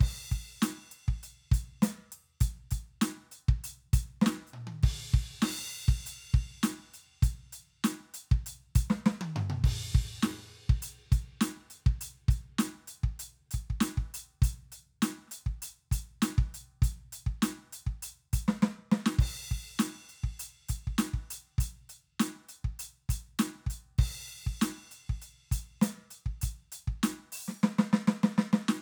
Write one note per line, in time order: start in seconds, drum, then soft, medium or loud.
0.01 kick loud
0.01 crash medium
0.31 closed hi-hat medium
0.31 kick medium
0.62 closed hi-hat loud
0.62 snare loud
0.92 closed hi-hat medium
1.08 kick loud
1.08 snare soft
1.23 closed hi-hat medium
1.52 closed hi-hat loud
1.52 kick loud
1.82 closed hi-hat loud
1.82 snare loud
2.12 closed hi-hat medium
2.41 closed hi-hat loud
2.41 kick loud
2.71 closed hi-hat loud
2.71 kick medium
3.02 closed hi-hat loud
3.02 snare loud
3.32 closed hi-hat medium
3.49 kick loud
3.64 closed hi-hat loud
3.94 closed hi-hat loud
3.94 kick loud
4.22 snare loud
4.26 snare loud
4.26 hi-hat pedal medium
4.47 hi-hat pedal soft
4.54 mid tom medium
4.67 high tom medium
4.83 kick loud
4.83 ride loud
5.14 kick loud
5.42 snare loud
5.42 crash loud
5.68 closed hi-hat soft
5.88 kick loud
6.07 closed hi-hat loud
6.34 kick loud
6.63 closed hi-hat loud
6.63 snare loud
6.94 closed hi-hat medium
7.23 closed hi-hat loud
7.23 kick loud
7.53 closed hi-hat medium
7.84 closed hi-hat loud
7.84 snare loud
8.14 closed hi-hat loud
8.32 kick loud
8.46 closed hi-hat loud
8.76 closed hi-hat loud
8.76 kick loud
8.90 snare loud
9.06 snare loud
9.21 high tom loud
9.36 floor tom loud
9.50 mid tom loud
9.64 kick loud
9.64 ride loud
9.95 kick loud
9.95 snare soft
10.23 snare loud
10.23 ride medium
10.70 kick loud
10.83 closed hi-hat loud
11.12 closed hi-hat medium
11.12 kick loud
11.41 closed hi-hat loud
11.41 snare loud
11.70 closed hi-hat medium
11.87 kick loud
12.01 closed hi-hat loud
12.29 closed hi-hat medium
12.29 kick loud
12.59 closed hi-hat loud
12.59 snare loud
12.88 closed hi-hat medium
13.04 kick loud
13.20 closed hi-hat loud
13.51 closed hi-hat loud
13.51 kick medium
13.70 kick medium
13.81 closed hi-hat loud
13.81 snare loud
13.98 kick medium
14.14 closed hi-hat loud
14.42 closed hi-hat loud
14.42 kick loud
14.72 closed hi-hat medium
15.02 closed hi-hat loud
15.02 snare loud
15.28 closed hi-hat loud
15.28 snare soft
15.46 kick medium
15.62 closed hi-hat loud
15.92 closed hi-hat loud
15.92 kick loud
16.22 closed hi-hat loud
16.22 snare loud
16.38 kick loud
16.54 closed hi-hat medium
16.82 closed hi-hat loud
16.82 kick loud
17.13 closed hi-hat loud
17.27 kick medium
17.43 closed hi-hat loud
17.43 snare loud
17.73 closed hi-hat loud
17.87 kick medium
18.03 closed hi-hat loud
18.33 closed hi-hat loud
18.33 kick loud
18.48 snare loud
18.63 snare loud
18.92 snare loud
19.06 snare loud
19.19 kick loud
19.19 crash loud
19.51 kick medium
19.79 closed hi-hat loud
19.79 snare loud
20.09 closed hi-hat medium
20.24 kick medium
20.24 snare soft
20.40 closed hi-hat loud
20.69 closed hi-hat loud
20.69 kick medium
20.87 kick medium
20.98 closed hi-hat loud
20.98 snare loud
21.14 kick medium
21.31 closed hi-hat loud
21.59 closed hi-hat loud
21.59 kick loud
21.89 closed hi-hat medium
22.20 closed hi-hat loud
22.20 snare loud
22.49 closed hi-hat medium
22.65 kick medium
22.80 closed hi-hat loud
23.09 closed hi-hat loud
23.09 kick medium
23.39 closed hi-hat loud
23.39 snare loud
23.67 closed hi-hat medium
23.67 kick medium
23.95 snare soft
23.95 crash loud
23.99 kick loud
24.14 hi-hat pedal soft
24.28 closed hi-hat soft
24.47 kick medium
24.47 snare soft
24.62 closed hi-hat loud
24.62 snare loud
24.91 closed hi-hat medium
25.10 kick medium
25.22 closed hi-hat medium
25.52 closed hi-hat loud
25.52 kick medium
25.82 closed hi-hat loud
25.82 snare loud
26.11 closed hi-hat medium
26.26 kick medium
26.42 closed hi-hat loud
26.42 kick medium
26.72 closed hi-hat loud
26.88 kick medium
27.03 closed hi-hat loud
27.03 snare loud
27.32 open hi-hat loud
27.48 snare medium
27.64 snare loud
27.79 snare loud
27.93 snare loud
28.08 snare loud
28.24 snare loud
28.38 snare loud
28.53 snare loud
28.69 snare loud